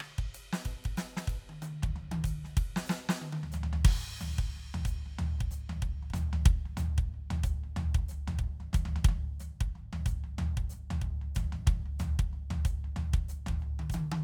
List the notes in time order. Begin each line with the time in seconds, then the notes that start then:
0.01 cross-stick, ride
0.19 kick
0.35 hi-hat pedal, ride
0.53 snare
0.66 kick, ride
0.85 kick, ride
0.98 snare, hi-hat pedal, ride
1.17 snare
1.28 kick, ride
1.50 high tom
1.63 hi-hat pedal, high tom
1.83 kick, floor tom
1.96 floor tom
2.12 high tom
2.25 kick, hi-hat pedal, ride
2.45 snare
2.58 kick, ride
2.77 snare
2.86 snare, hi-hat pedal
3.10 snare
3.22 high tom
3.33 high tom
3.44 floor tom
3.52 floor tom, hi-hat pedal
3.64 floor tom
3.74 floor tom
3.85 kick, crash
4.20 floor tom, hi-hat pedal
4.39 kick
4.57 floor tom
4.75 floor tom
4.86 kick, hi-hat pedal
5.07 floor tom
5.19 floor tom
5.40 kick, floor tom
5.52 floor tom, hi-hat pedal
5.70 floor tom
5.83 kick, floor tom
6.03 floor tom
6.11 kick, floor tom
6.15 hi-hat pedal
6.34 floor tom
6.46 kick, floor tom
6.66 floor tom
6.78 floor tom, hi-hat pedal
6.99 kick, floor tom
7.15 floor tom
7.31 floor tom
7.44 kick, floor tom, hi-hat pedal
7.64 floor tom
7.77 floor tom
7.95 kick, floor tom
8.09 floor tom, hi-hat pedal
8.28 floor tom
8.39 kick
8.44 floor tom
8.61 floor tom
8.74 kick, floor tom, hi-hat pedal
8.86 floor tom
8.96 floor tom
9.05 kick
9.09 floor tom
9.25 kick
9.40 floor tom, hi-hat pedal
9.61 kick, floor tom
9.76 floor tom
9.93 floor tom
10.07 kick, floor tom, hi-hat pedal
10.24 floor tom
10.39 floor tom
10.58 kick, floor tom
10.70 floor tom, hi-hat pedal
10.91 floor tom
11.02 kick, floor tom
11.22 floor tom
11.36 kick, floor tom, hi-hat pedal
11.53 floor tom
11.67 kick, floor tom
11.86 floor tom
12.00 floor tom, hi-hat pedal
12.20 kick, floor tom
12.34 floor tom
12.51 floor tom
12.66 kick, floor tom, hi-hat pedal
12.85 floor tom
12.97 floor tom
13.14 kick, floor tom
13.29 floor tom, hi-hat pedal
13.47 kick, floor tom
13.60 floor tom, hi-hat pedal
13.80 high tom
13.90 kick, hi-hat pedal
13.95 high tom
14.12 high tom